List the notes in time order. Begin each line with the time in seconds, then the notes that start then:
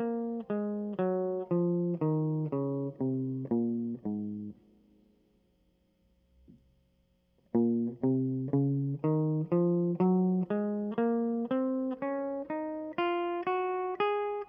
0.00 A#3
0.50 G#3
0.99 F#3
1.52 F3
2.02 D#3
2.53 C#3
3.02 C3
3.53 A#2
4.07 G#2
7.56 A#2
8.05 C3
8.55 C#3
9.05 D#3
9.52 F3
10.01 F#3
10.51 G#3
10.98 A#3
11.51 C4
12.02 C#4
12.50 D#4
12.98 F4
13.47 F#4
14.00 G#4